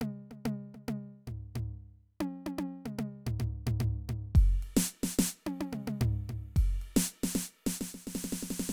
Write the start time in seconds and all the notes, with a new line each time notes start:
0.00 mid tom
0.31 mid tom
0.45 mid tom
0.74 mid tom
0.88 mid tom
1.27 floor tom
1.55 floor tom
2.20 high tom
2.46 high tom
2.58 high tom
2.85 mid tom
2.99 mid tom
3.26 floor tom
3.40 floor tom
3.67 floor tom
3.80 floor tom
4.09 floor tom
4.35 kick, ride
4.62 ride
4.77 snare
5.03 snare
5.19 snare
5.46 high tom
5.61 high tom
5.73 mid tom
5.87 mid tom
6.01 floor tom
6.29 floor tom
6.56 kick, ride
6.81 ride
6.96 snare
7.23 snare
7.35 snare
7.66 snare
7.81 snare
7.94 snare
8.07 snare
8.15 snare
8.24 snare
8.32 snare
8.42 snare
8.50 snare
8.59 snare
8.69 snare